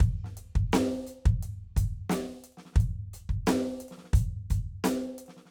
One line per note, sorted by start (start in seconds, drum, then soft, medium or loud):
0.01 kick loud
0.01 snare soft
0.01 closed hi-hat soft
0.25 snare soft
0.37 closed hi-hat medium
0.56 kick loud
0.73 closed hi-hat medium
0.73 snare loud
1.07 closed hi-hat medium
1.26 kick loud
1.43 closed hi-hat medium
1.77 kick loud
1.77 closed hi-hat medium
2.10 closed hi-hat loud
2.10 snare loud
2.44 closed hi-hat medium
2.53 closed hi-hat soft
2.58 snare soft
2.66 snare soft
2.73 kick loud
2.73 snare soft
2.81 snare soft
2.81 closed hi-hat medium
3.14 closed hi-hat medium
3.30 kick medium
3.47 closed hi-hat medium
3.47 snare loud
3.81 closed hi-hat medium
3.89 snare soft
3.89 closed hi-hat soft
3.98 snare soft
4.05 snare soft
4.14 closed hi-hat medium
4.14 kick loud
4.51 closed hi-hat medium
4.51 kick loud
4.85 closed hi-hat loud
4.85 snare loud
5.19 closed hi-hat medium
5.27 snare soft
5.27 closed hi-hat soft
5.37 snare soft
5.46 snare soft